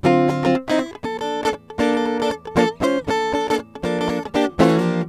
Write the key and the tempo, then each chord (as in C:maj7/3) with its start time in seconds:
G minor, 119 BPM
0.00 D:min9(*5)
1.06 G:min9(*1)/b7